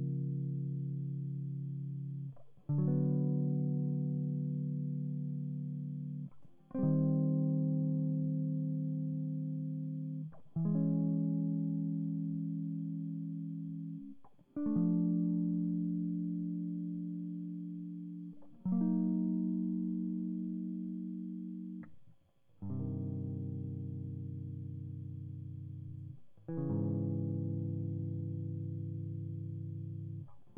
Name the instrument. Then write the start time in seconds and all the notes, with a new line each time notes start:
electric guitar
2.70 D3
2.79 F#3
2.88 B3
6.75 C4
6.79 G3
6.84 D#3
10.57 E3
10.66 G#3
10.75 C#4
14.56 D4
14.66 A3
14.77 F3
18.66 F#3
18.72 A#3
18.81 D#4
22.64 G2
22.71 C3
22.80 D#3
26.49 E3
26.58 C#3
26.71 G#2